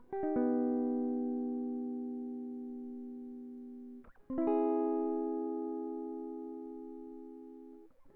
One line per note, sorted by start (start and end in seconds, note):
0.13 4.03 G4
0.23 2.94 D#4
0.36 4.04 B3
4.30 7.32 C4
4.38 7.87 E4
4.47 7.87 G#4